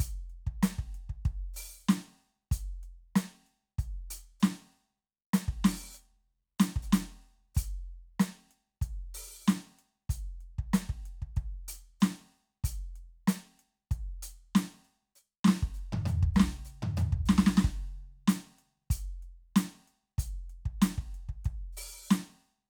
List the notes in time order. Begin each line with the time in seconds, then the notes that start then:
0.01 closed hi-hat, kick
0.31 closed hi-hat
0.48 kick
0.64 closed hi-hat, snare
0.80 kick
0.96 closed hi-hat
1.11 kick
1.26 kick, closed hi-hat
1.55 open hi-hat, hi-hat pedal
1.90 closed hi-hat, snare, hi-hat pedal
2.53 closed hi-hat, kick
2.84 closed hi-hat
3.17 closed hi-hat, snare
3.48 closed hi-hat
3.80 closed hi-hat, kick
4.12 open hi-hat
4.41 closed hi-hat, snare, hi-hat pedal
5.35 open hi-hat, snare
5.49 kick
5.66 open hi-hat, snare
5.95 hi-hat pedal
6.60 closed hi-hat, snare, hi-hat pedal
6.77 kick
6.84 hi-hat pedal
6.94 closed hi-hat, snare
7.56 closed hi-hat, kick, hi-hat pedal
8.21 closed hi-hat, snare
8.52 closed hi-hat
8.83 kick, closed hi-hat
9.16 open hi-hat
9.48 closed hi-hat, snare, hi-hat pedal
9.80 closed hi-hat
10.11 closed hi-hat, kick
10.42 closed hi-hat
10.60 kick
10.75 closed hi-hat, snare
10.90 kick
11.07 closed hi-hat
11.23 kick
11.38 kick, closed hi-hat
11.69 open hi-hat
12.02 closed hi-hat, snare, hi-hat pedal
12.65 closed hi-hat, kick
12.97 closed hi-hat
13.29 closed hi-hat, snare
13.60 closed hi-hat
13.92 kick, closed hi-hat
14.24 open hi-hat
14.56 open hi-hat, snare, hi-hat pedal
14.86 closed hi-hat
15.17 hi-hat pedal
15.46 snare, hi-hat pedal
15.49 snare
15.64 kick
15.75 hi-hat pedal
15.94 mid tom, high tom
16.07 hi-hat pedal, mid tom, high tom
16.24 kick
16.35 snare, hi-hat pedal
16.41 snare
16.66 hi-hat pedal
16.84 mid tom, high tom
16.98 hi-hat pedal, mid tom, high tom
17.14 kick
17.27 snare, hi-hat pedal
17.39 snare
17.48 snare
17.58 snare
17.65 kick
18.29 closed hi-hat, snare
18.60 closed hi-hat
18.91 closed hi-hat, kick
19.24 closed hi-hat
19.57 closed hi-hat, snare
19.89 closed hi-hat
20.19 closed hi-hat, kick
20.51 closed hi-hat
20.67 kick
20.83 closed hi-hat, snare
20.99 kick
21.16 closed hi-hat
21.30 kick
21.46 kick, closed hi-hat
21.74 hi-hat pedal
21.78 open hi-hat
22.12 open hi-hat, snare, hi-hat pedal